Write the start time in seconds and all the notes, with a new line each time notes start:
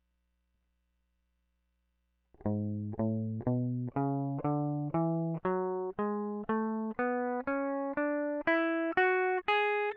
2.47 G#2
3.01 A2
3.48 B2
3.98 C#3
4.46 D3
4.96 E3
5.46 F#3
6.00 G#3
6.50 A3
7.00 B3
7.48 C#4
7.98 D4
8.48 E4
8.98 F#4
9.49 G#4